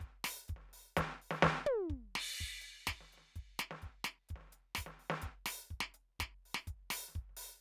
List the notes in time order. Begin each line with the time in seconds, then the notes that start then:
0.01 kick, closed hi-hat
0.25 open hi-hat, snare
0.49 closed hi-hat, kick
0.57 snare
0.62 snare
0.66 snare
0.70 open hi-hat, snare
0.97 closed hi-hat, kick, snare
1.22 open hi-hat
1.31 snare
1.43 kick, snare
1.67 high tom
1.90 kick
2.16 snare, crash
2.41 kick
2.62 open hi-hat
2.88 open hi-hat, kick, snare
3.01 snare
3.13 snare, open hi-hat
3.18 snare
3.22 snare
3.36 kick, closed hi-hat
3.60 open hi-hat, snare
3.72 snare
3.82 kick, closed hi-hat
4.05 open hi-hat, snare
4.29 kick, closed hi-hat
4.36 snare
4.41 snare
4.48 snare
4.53 open hi-hat
4.76 open hi-hat, kick, snare
4.87 snare
5.00 open hi-hat
5.11 snare
5.22 closed hi-hat, kick
5.46 open hi-hat, snare
5.71 kick, closed hi-hat
5.81 snare
5.95 open hi-hat
6.20 closed hi-hat, kick, snare
6.46 open hi-hat
6.55 snare
6.68 kick, closed hi-hat
6.91 open hi-hat, snare
7.09 snare
7.15 kick, closed hi-hat
7.30 snare
7.37 open hi-hat